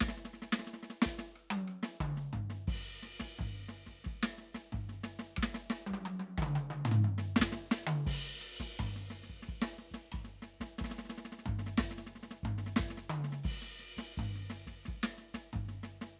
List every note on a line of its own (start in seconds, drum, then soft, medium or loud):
0.01 kick medium
0.01 snare loud
0.09 kick soft
0.09 snare medium
0.18 snare soft
0.25 snare soft
0.34 snare soft
0.42 snare medium
0.53 snare loud
0.60 snare medium
0.67 snare soft
0.74 snare soft
0.83 snare soft
0.90 snare soft
1.02 snare loud
1.06 kick soft
1.12 kick soft
1.19 snare medium
1.36 cross-stick soft
1.51 high tom loud
1.68 cross-stick soft
1.83 snare medium
2.01 kick soft
2.01 mid tom loud
2.17 snare soft
2.33 kick soft
2.33 floor tom loud
2.50 snare soft
2.68 kick medium
2.68 snare soft
2.68 crash medium
3.03 snare soft
3.03 hi-hat pedal soft
3.20 kick soft
3.20 snare medium
3.39 kick soft
3.39 floor tom medium
3.69 snare soft
3.69 hi-hat pedal soft
3.87 kick soft
3.87 snare soft
4.04 kick soft
4.04 snare soft
4.23 snare loud
4.37 snare soft
4.37 hi-hat pedal soft
4.55 kick soft
4.55 snare medium
4.73 kick soft
4.73 floor tom medium
4.89 snare soft
5.04 snare medium
5.04 hi-hat pedal soft
5.19 snare medium
5.37 kick medium
5.37 cross-stick medium
5.43 snare loud
5.47 kick soft
5.55 snare medium
5.70 snare medium
5.87 high tom loud
5.91 kick soft
5.91 high tom loud
6.06 high tom medium
6.20 high tom medium
6.38 kick medium
6.38 mid tom loud
6.43 mid tom loud
6.56 mid tom medium
6.71 mid tom medium
6.86 floor tom loud
6.92 floor tom loud
7.05 floor tom medium
7.14 hi-hat pedal soft
7.19 snare medium
7.37 snare loud
7.41 kick soft
7.41 snare loud
7.53 snare medium
7.72 snare loud
7.87 mid tom loud
8.07 kick medium
8.07 crash loud
8.42 cross-stick soft
8.60 kick soft
8.60 snare medium
8.79 kick soft
8.79 floor tom loud
8.96 snare soft
9.11 snare soft
9.11 hi-hat pedal soft
9.24 snare soft
9.30 kick soft
9.43 snare soft
9.49 kick soft
9.62 snare loud
9.76 snare soft
9.76 hi-hat pedal soft
9.92 kick soft
9.92 snare medium
10.12 kick soft
10.12 floor tom medium
10.25 snare soft
10.43 snare soft
10.43 hi-hat pedal soft
10.61 kick soft
10.61 snare medium
10.79 kick soft
10.79 snare medium
10.85 snare medium
10.90 snare soft
10.91 snare medium
10.99 snare medium
11.05 snare soft
11.10 snare medium
11.18 snare soft
11.25 snare soft
11.32 snare soft
11.39 snare soft
11.46 kick soft
11.46 floor tom loud
11.46 hi-hat pedal soft
11.57 kick soft
11.57 snare soft
11.67 snare soft
11.78 kick soft
11.78 snare loud
11.78 hi-hat pedal soft
11.88 kick soft
11.88 snare soft
11.98 snare soft
12.07 snare soft
12.16 snare soft
12.23 snare soft
12.31 snare soft
12.44 kick soft
12.44 floor tom loud
12.58 snare soft
12.67 snare soft
12.77 kick soft
12.77 snare loud
12.87 kick soft
12.87 snare soft
12.98 snare soft
13.10 mid tom loud
13.24 snare soft
13.33 snare soft
13.44 kick medium
13.44 crash medium
13.62 snare soft
13.77 snare soft
13.77 hi-hat pedal soft
13.97 kick soft
13.97 snare medium
14.18 kick soft
14.18 floor tom loud
14.36 snare soft
14.50 snare medium
14.50 hi-hat pedal soft
14.67 kick soft
14.67 snare soft
14.86 kick soft
14.86 snare soft
15.04 snare loud
15.17 snare soft
15.17 hi-hat pedal medium
15.35 kick soft
15.35 snare medium
15.53 kick soft
15.53 floor tom medium
15.69 snare soft
15.84 snare medium
15.84 hi-hat pedal soft
16.02 snare medium